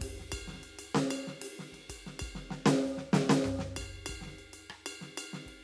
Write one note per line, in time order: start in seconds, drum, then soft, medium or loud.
0.01 kick soft
0.01 hi-hat pedal medium
0.01 ride loud
0.09 kick soft
0.11 kick soft
0.20 snare soft
0.32 kick soft
0.32 ride bell loud
0.39 kick soft
0.48 snare soft
0.53 snare soft
0.59 snare soft
0.63 snare soft
0.63 ride bell medium
0.79 ride bell loud
0.95 snare loud
1.11 ride bell loud
1.27 snare soft
1.42 hi-hat pedal medium
1.42 ride loud
1.59 snare soft
1.72 kick soft
1.72 snare soft
1.72 ride bell soft
1.79 snare soft
1.90 kick soft
1.90 hi-hat pedal soft
1.90 ride bell loud
2.07 snare soft
2.20 kick soft
2.20 ride bell loud
2.28 kick soft
2.35 snare soft
2.51 snare medium
2.66 snare loud
2.75 snare soft
2.84 floor tom soft
2.84 hi-hat pedal soft
2.98 snare soft
3.12 snare loud
3.12 hi-hat pedal soft
3.30 snare loud
3.36 snare soft
3.45 hi-hat pedal medium
3.45 floor tom medium
3.59 snare medium
3.77 kick soft
3.77 ride bell loud
3.82 cross-stick soft
4.06 kick soft
4.06 ride bell loud
4.21 snare soft
4.26 snare soft
4.30 snare soft
4.39 ride bell soft
4.54 ride bell medium
4.70 cross-stick medium
4.86 ride bell loud
5.01 snare soft
5.18 hi-hat pedal medium
5.18 ride bell loud
5.33 snare soft
5.45 kick soft
5.45 snare soft
5.45 ride medium